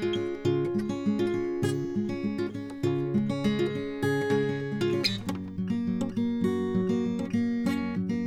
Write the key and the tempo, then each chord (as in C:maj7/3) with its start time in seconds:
C# major, 100 BPM
0.00 C#:maj
5.24 F#:maj